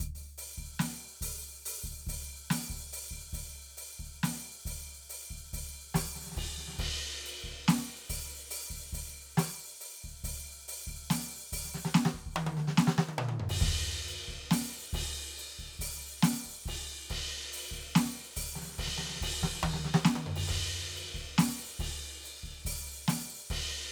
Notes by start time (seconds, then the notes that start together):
0.00 open hi-hat, kick, hi-hat pedal
0.16 open hi-hat
0.38 open hi-hat
0.58 kick, open hi-hat
0.80 open hi-hat, snare
1.00 open hi-hat
1.22 open hi-hat, kick
1.44 open hi-hat
1.66 open hi-hat
1.84 kick, open hi-hat
2.08 open hi-hat, kick
2.29 open hi-hat
2.51 open hi-hat, snare
2.70 kick, open hi-hat
2.93 open hi-hat
3.12 open hi-hat, kick
3.34 open hi-hat, kick
3.56 open hi-hat
3.78 open hi-hat
4.00 kick, open hi-hat
4.24 open hi-hat, snare
4.44 open hi-hat
4.66 open hi-hat, kick
4.87 open hi-hat
5.10 open hi-hat
5.31 kick, open hi-hat
5.54 open hi-hat, kick
5.74 open hi-hat
5.95 open hi-hat, kick, snare
6.16 snare
6.19 snare
6.21 snare
6.27 snare
6.32 snare
6.37 kick, crash
6.45 snare
6.58 snare
6.61 snare
6.68 snare
6.74 snare
6.78 kick, snare, ride
7.26 open hi-hat
7.44 kick, open hi-hat
7.69 open hi-hat, snare
7.89 open hi-hat
8.10 open hi-hat, kick
8.29 open hi-hat
8.51 open hi-hat
8.71 kick, open hi-hat
8.93 open hi-hat, kick, snare
9.16 open hi-hat
9.38 open hi-hat, snare
9.43 snare
9.59 open hi-hat
9.81 open hi-hat
10.02 kick, open hi-hat
10.24 open hi-hat, kick
10.47 open hi-hat
10.69 open hi-hat
10.88 kick, open hi-hat
11.11 open hi-hat, snare
11.32 open hi-hat
11.39 snare
11.53 open hi-hat, kick
11.65 snare
11.75 snare
11.85 snare
11.95 snare
12.06 snare
12.15 kick
12.27 kick
12.37 high tom
12.47 high tom
12.57 snare
12.68 snare
12.78 snare
12.88 snare
12.99 snare
13.09 closed hi-hat, high tom
13.14 crash
13.19 mid tom
13.29 high tom
13.40 floor tom
13.49 kick, crash
13.61 kick, ride
14.09 open hi-hat
14.29 kick, open hi-hat
14.51 open hi-hat, snare
14.74 open hi-hat
14.94 kick, crash
15.15 open hi-hat
15.38 open hi-hat
15.59 kick, open hi-hat
15.80 open hi-hat, kick
15.97 snare
16.23 open hi-hat, snare
16.46 kick, open hi-hat
16.66 kick, crash
16.89 open hi-hat
17.11 kick, ride
17.53 open hi-hat
17.72 kick, open hi-hat
17.96 open hi-hat, snare
18.15 open hi-hat
18.19 snare
18.27 snare
18.37 open hi-hat, kick
18.56 snare
18.63 snare
18.67 snare
18.79 kick, ride
18.87 snare
18.98 snare
19.04 snare
19.10 snare
19.16 snare
19.22 kick, crash
19.43 kick, snare
19.56 snare
19.64 kick, high tom
19.74 snare
19.85 snare
19.95 snare
20.04 kick, snare
20.16 high tom
20.27 floor tom
20.36 kick, crash
20.48 kick, ride
20.96 open hi-hat
21.04 snare
21.15 kick, open hi-hat
21.39 open hi-hat, snare
21.59 open hi-hat
21.80 kick, crash
22.24 open hi-hat
22.44 kick, open hi-hat
22.66 open hi-hat, kick
22.87 open hi-hat
23.08 open hi-hat, snare
23.29 open hi-hat
23.51 kick, ride